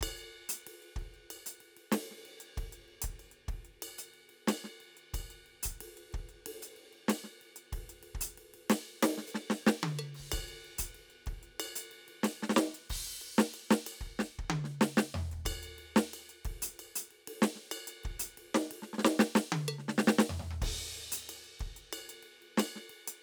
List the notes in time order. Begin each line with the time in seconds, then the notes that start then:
0.01 kick, ride bell
0.17 closed hi-hat
0.32 ride
0.49 closed hi-hat
0.67 ride
0.82 closed hi-hat
0.96 kick, ride
1.14 closed hi-hat
1.30 ride bell
1.46 closed hi-hat
1.60 ride
1.77 ride
1.92 snare, ride
2.11 snare
2.25 ride
2.40 closed hi-hat
2.57 kick, cross-stick, floor tom, ride
2.72 closed hi-hat
2.88 ride
3.02 kick, closed hi-hat
3.19 ride bell
3.31 closed hi-hat
3.48 kick, ride
3.65 closed hi-hat
3.82 ride bell
3.98 closed hi-hat
4.14 ride
4.29 ride
4.47 snare, ride bell
4.64 snare
4.80 ride
4.97 closed hi-hat
5.14 kick, ride bell
5.30 closed hi-hat
5.46 ride
5.63 closed hi-hat, kick
5.81 ride
5.97 closed hi-hat
6.13 kick, ride
6.29 closed hi-hat
6.46 ride
6.62 closed hi-hat
6.76 ride
6.93 ride
7.08 snare, ride bell
7.24 snare
7.41 ride
7.56 closed hi-hat
7.72 kick, cross-stick, floor tom, ride
7.89 closed hi-hat
8.03 ride
8.15 kick
8.21 closed hi-hat
8.37 ride
8.54 ride
8.70 snare, ride bell
9.03 snare, ride
9.17 snare
9.27 hi-hat pedal
9.34 snare
9.50 snare
9.67 snare
9.83 high tom
9.99 percussion
10.14 crash
10.19 kick
10.32 kick, hi-hat pedal, ride bell
10.48 closed hi-hat
10.64 ride
10.78 closed hi-hat, kick
10.94 ride
11.10 closed hi-hat
11.26 kick, ride
11.43 closed hi-hat
11.60 ride bell
11.75 closed hi-hat
11.91 ride
12.08 ride
12.23 snare, ride bell
12.42 snare
12.49 snare
12.56 snare
12.74 closed hi-hat
12.90 kick, crash
13.07 closed hi-hat
13.21 ride bell
13.38 snare
13.54 ride bell
13.71 snare
13.86 ride bell
14.01 kick
14.19 snare
14.39 kick
14.50 high tom
14.64 snare
14.81 snare
14.97 snare
15.14 floor tom
15.31 kick, closed hi-hat
15.45 kick, ride bell
15.63 closed hi-hat
15.78 ride
15.96 snare
16.13 ride bell
16.29 closed hi-hat
16.45 kick, ride
16.62 closed hi-hat
16.79 ride bell
16.95 closed hi-hat
17.11 ride
17.27 ride
17.42 snare
17.55 snare
17.71 ride bell
17.87 closed hi-hat
18.03 kick, ride
18.19 closed hi-hat
18.37 ride
18.54 snare
18.71 ride
18.82 snare
18.93 snare
18.98 snare
19.05 snare
19.19 snare
19.35 snare
19.52 high tom
19.68 percussion
19.78 snare
19.88 snare
19.98 snare
20.07 snare
20.18 snare
20.29 floor tom
20.51 floor tom
20.62 kick, ride
20.79 closed hi-hat
20.95 ride
21.12 closed hi-hat
21.29 ride bell
21.44 closed hi-hat
21.60 kick, ride
21.76 closed hi-hat
21.93 ride bell
22.09 closed hi-hat
22.23 ride
22.42 ride
22.57 snare, ride bell
22.76 snare
22.89 ride
23.07 closed hi-hat